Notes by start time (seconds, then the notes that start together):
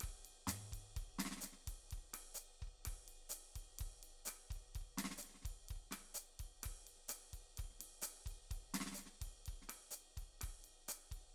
0.01 kick, cross-stick, snare, ride
0.09 kick
0.25 ride
0.48 snare, hi-hat pedal, mid tom, ride
0.73 kick, ride
0.78 kick
0.97 kick, ride
1.02 kick
1.19 snare, ride
1.26 snare
1.32 snare
1.38 snare
1.42 snare, hi-hat pedal, ride
1.53 snare
1.60 snare
1.68 kick, ride
1.73 kick
1.92 kick, ride
1.98 kick
2.14 cross-stick, ride
2.35 hi-hat pedal
2.62 kick, ride
2.68 kick
2.86 kick, cross-stick, ride
2.93 kick
3.09 ride
3.30 cross-stick, hi-hat pedal, ride
3.56 kick, ride
3.79 kick, snare, ride
3.87 kick
4.04 ride
4.26 cross-stick, hi-hat pedal, ride
4.51 kick, ride
4.56 kick
4.76 kick, ride
4.81 kick
4.98 snare, ride
5.05 snare
5.11 snare
5.18 snare, hi-hat pedal
5.24 snare, ride
5.29 snare
5.35 snare
5.43 kick, snare, ride
5.51 kick
5.69 kick, ride
5.76 kick
5.92 cross-stick, snare, ride
6.15 hi-hat pedal, ride
6.40 kick, ride
6.45 kick
6.63 kick, cross-stick, snare, hi-hat pedal, ride
6.71 kick
6.88 ride
6.97 snare
7.09 cross-stick, snare, hi-hat pedal, ride
7.34 kick, ride
7.58 kick, cross-stick, ride
7.65 kick
7.71 snare
7.80 snare, ride
8.02 cross-stick, hi-hat pedal, ride
8.27 kick, ride
8.32 kick
8.51 kick, ride
8.57 kick
8.75 snare, ride
8.81 snare
8.87 snare
8.92 snare, hi-hat pedal
8.99 snare, ride
9.06 snare
9.22 kick, ride
9.27 kick
9.47 kick, ride
9.53 kick
9.62 snare
9.69 cross-stick, ride
9.92 hi-hat pedal, ride
10.18 kick, ride
10.23 kick
10.42 kick, cross-stick, ride
10.49 kick
10.65 ride
10.89 cross-stick, snare, hi-hat pedal, ride
11.12 kick, ride
11.17 kick